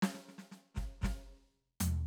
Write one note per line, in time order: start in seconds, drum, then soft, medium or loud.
0.02 snare medium
0.15 snare soft
0.29 snare soft
0.38 snare soft
0.52 snare soft
0.75 kick soft
0.75 snare soft
1.01 kick medium
1.01 snare soft
1.04 snare medium
1.80 open hi-hat loud
1.80 floor tom loud